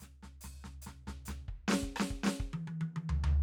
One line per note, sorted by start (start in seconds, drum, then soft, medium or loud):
0.00 snare soft
0.00 floor tom soft
0.00 hi-hat pedal soft
0.23 snare soft
0.23 floor tom soft
0.41 snare soft
0.41 floor tom soft
0.41 hi-hat pedal medium
0.64 snare soft
0.64 floor tom soft
0.82 hi-hat pedal medium
0.86 snare soft
0.86 floor tom soft
1.07 snare soft
1.07 floor tom medium
1.25 snare soft
1.25 floor tom medium
1.25 hi-hat pedal medium
1.48 kick soft
1.68 snare loud
1.71 snare loud
1.82 kick soft
1.96 cross-stick medium
1.96 snare medium
2.10 kick soft
2.23 snare medium
2.26 snare medium
2.40 kick soft
2.53 high tom medium
2.67 high tom medium
2.81 high tom medium
2.96 high tom medium
3.09 floor tom loud
3.24 floor tom loud